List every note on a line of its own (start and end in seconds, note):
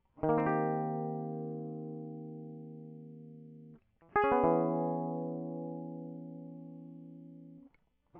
0.24 3.79 D#3
0.29 3.80 A#3
0.38 3.77 C4
0.46 3.66 G4
4.16 6.46 G#4
4.24 7.70 C#4
4.32 7.70 B3
4.44 7.62 E3